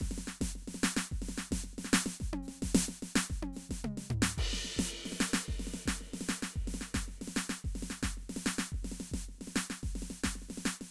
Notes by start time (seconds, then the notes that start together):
0.01 kick, snare
0.07 kick
0.11 snare
0.18 snare
0.26 snare, hi-hat pedal
0.41 kick, snare
0.55 snare
0.62 snare
0.68 snare
0.75 snare
0.81 snare, hi-hat pedal
0.97 snare
1.12 kick, snare
1.22 snare
1.29 snare
1.34 snare, hi-hat pedal
1.51 kick, snare
1.57 kick
1.64 snare
1.73 snare
1.78 snare
1.85 snare
1.91 snare, hi-hat pedal
2.06 snare
2.20 kick, snare
2.27 kick
2.33 high tom
2.43 hi-hat pedal
2.48 snare
2.62 kick, snare
2.75 snare
2.88 snare
3.01 snare, hi-hat pedal
3.16 snare
3.30 kick, snare
3.36 kick
3.43 high tom
3.53 snare, hi-hat pedal
3.70 kick, snare
3.84 mid tom
3.98 snare
4.09 floor tom, hi-hat pedal
4.22 snare
4.38 kick, ride
4.53 snare
4.61 snare, hi-hat pedal
4.77 kick, snare
4.93 snare
4.99 snare
5.06 snare
5.12 snare
5.18 snare, hi-hat pedal
5.34 snare
5.48 kick, snare
5.55 kick
5.60 snare
5.67 snare, hi-hat pedal
5.74 snare
5.86 kick, snare
5.91 kick
6.01 snare
6.07 snare
6.12 snare
6.21 snare
6.25 snare, hi-hat pedal
6.43 snare
6.56 kick, snare
6.62 kick
6.67 snare
6.74 snare
6.79 snare, hi-hat pedal
6.94 kick, snare
7.00 kick
7.08 snare
7.18 snare
7.21 snare
7.28 snare
7.32 snare, hi-hat pedal
7.50 snare
7.65 kick, snare
7.72 kick, snare
7.83 snare
7.88 snare, hi-hat pedal
8.03 kick, snare
8.17 snare
8.23 snare
8.27 snare
8.30 snare
8.36 snare
8.43 snare, hi-hat pedal
8.59 snare
8.72 kick, snare
8.83 snare
8.85 snare
8.92 snare
8.97 snare, hi-hat pedal
9.12 kick, snare
9.29 snare
9.35 snare
9.38 snare
9.41 snare
9.47 snare
9.54 snare, hi-hat pedal
9.70 snare
9.83 kick, snare
9.90 kick
9.95 snare
10.02 snare
10.08 snare, hi-hat pedal
10.24 kick, snare
10.36 snare
10.42 snare
10.49 snare
10.58 snare
10.65 snare, hi-hat pedal
10.81 snare